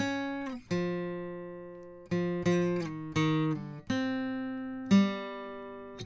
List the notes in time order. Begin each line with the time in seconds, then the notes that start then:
0.01 C#4
0.72 F3
2.13 F3
2.47 F3
2.82 D#3
3.17 D#3
3.53 D3
3.91 C4
4.92 G3